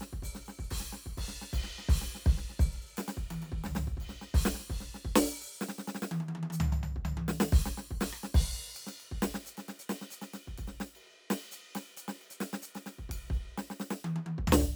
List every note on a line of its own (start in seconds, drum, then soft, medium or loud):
0.01 snare medium
0.13 kick medium
0.23 open hi-hat medium
0.23 kick medium
0.35 snare soft
0.48 snare soft
0.59 kick medium
0.71 kick medium
0.71 crash medium
0.80 snare soft
0.92 kick soft
0.92 snare soft
1.06 kick medium
1.17 kick medium
1.17 crash medium
1.28 snare soft
1.42 snare soft
1.53 kick medium
1.53 ride medium
1.64 snare soft
1.78 snare soft
1.89 kick loud
1.89 crash medium
2.02 snare soft
2.15 snare soft
2.25 kick loud
2.25 crash medium
2.38 snare soft
2.50 snare soft
2.59 open hi-hat medium
2.59 kick loud
2.75 snare soft
2.97 snare medium
2.97 ride medium
3.08 snare medium
3.08 ride medium
3.17 kick medium
3.31 high tom medium
3.31 ride medium
3.42 high tom medium
3.42 ride soft
3.52 kick medium
3.64 snare medium
3.64 floor tom medium
3.75 snare medium
3.75 floor tom medium
3.87 kick medium
3.97 kick medium
3.97 ride medium
4.09 snare soft
4.21 snare soft
4.34 kick loud
4.34 crash medium
4.45 snare loud
4.54 snare soft
4.60 snare soft
4.70 kick medium
4.70 crash medium
4.80 snare soft
4.94 snare soft
5.05 kick medium
5.16 open hi-hat loud
5.16 snare loud
5.42 ride medium
5.61 snare medium
5.69 snare medium
5.78 snare medium
5.88 snare medium
5.95 snare medium
6.02 snare medium
6.06 hi-hat pedal soft
6.11 high tom loud
6.20 high tom medium
6.29 high tom medium
6.35 high tom medium
6.43 high tom medium
6.50 hi-hat pedal medium
6.50 high tom medium
6.60 floor tom loud
6.72 floor tom medium
6.83 floor tom medium
6.96 kick medium
7.05 floor tom medium
7.17 high tom medium
7.28 snare medium
7.40 snare loud
7.52 kick loud
7.52 crash medium
7.66 snare medium
7.78 snare medium
7.91 kick medium
8.01 snare loud
8.01 crash medium
8.13 cross-stick medium
8.23 snare medium
8.34 kick loud
8.34 crash loud
8.74 hi-hat pedal soft
8.74 ride medium
8.87 snare medium
8.87 ride medium
9.00 ride soft
9.12 kick medium
9.18 hi-hat pedal soft
9.22 snare loud
9.22 ride soft
9.34 snare medium
9.45 hi-hat pedal medium
9.45 ride soft
9.57 snare medium
9.57 ride medium
9.68 snare medium
9.68 ride medium
9.79 hi-hat pedal medium
9.89 snare medium
9.89 ride medium
10.01 snare soft
10.11 hi-hat pedal medium
10.11 ride medium
10.22 snare medium
10.22 ride medium
10.34 snare medium
10.34 ride medium
10.48 kick soft
10.58 kick medium
10.58 ride medium
10.68 snare soft
10.80 snare medium
10.85 ride soft
10.95 ride soft
11.30 snare loud
11.30 ride medium
11.51 hi-hat pedal medium
11.51 ride medium
11.75 snare medium
11.75 ride medium
11.97 hi-hat pedal medium
11.97 ride medium
12.08 snare medium
12.08 ride soft
12.21 ride soft
12.30 hi-hat pedal medium
12.41 snare medium
12.41 ride medium
12.53 snare medium
12.62 hi-hat pedal medium
12.62 ride medium
12.75 snare medium
12.75 ride medium
12.86 snare medium
12.86 ride medium
12.99 kick soft
13.09 kick medium
13.09 ride loud
13.30 kick medium
13.30 ride soft
13.58 snare medium
13.70 snare medium
13.80 snare medium
13.91 snare medium
14.04 high tom loud
14.16 high tom medium
14.26 high tom medium
14.38 kick medium
14.47 floor tom loud
14.52 snare loud
14.61 kick medium